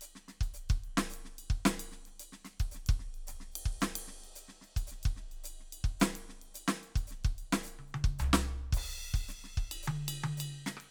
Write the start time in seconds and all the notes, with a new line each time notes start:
0.01 hi-hat pedal, ride bell
0.15 snare
0.28 snare, ride
0.41 kick, ride bell
0.54 hi-hat pedal
0.69 kick, ride bell
0.84 ride
0.97 snare
1.10 hi-hat pedal, ride
1.25 snare
1.38 ride bell
1.50 kick
1.65 snare, hi-hat pedal
1.79 ride bell
1.90 snare, hi-hat pedal
2.05 snare, ride
2.20 hi-hat pedal, ride bell
2.32 snare
2.45 snare, ride
2.60 kick, ride
2.71 snare, hi-hat pedal
2.86 kick, ride
2.99 snare
3.14 ride
3.27 snare, hi-hat pedal, ride, floor tom
3.40 snare
3.52 hi-hat pedal, ride
3.65 kick
3.81 snare, hi-hat pedal
3.95 ride
4.07 snare
4.22 snare, ride
4.35 hi-hat pedal, ride bell
4.48 snare
4.61 snare, ride
4.76 kick, ride bell
4.87 hi-hat pedal
4.91 snare
5.03 kick, ride bell
5.16 snare
5.31 ride bell
5.44 hi-hat pedal, ride bell
5.60 snare
5.72 ride bell
5.84 kick
6.00 snare, hi-hat pedal
6.15 ride
6.29 snare
6.42 ride
6.54 hi-hat pedal, ride bell
6.68 snare
6.83 ride bell
6.95 kick, ride bell
7.07 snare, hi-hat pedal
7.24 kick, ride
7.38 ride bell
7.52 snare
7.63 hi-hat pedal
7.68 ride bell
7.79 high tom
7.87 hi-hat pedal
7.94 high tom
8.04 kick
8.19 floor tom, hi-hat pedal
8.33 snare
8.72 kick, hi-hat pedal, ride, crash
9.03 ride
9.14 kick, ride bell
9.28 snare, hi-hat pedal
9.44 snare
9.53 kick, hi-hat pedal
9.71 ride bell
9.83 hi-hat pedal
9.87 high tom
10.08 ride bell
10.24 high tom
10.37 hi-hat pedal, ride bell
10.66 snare, ride bell
10.77 cross-stick, ride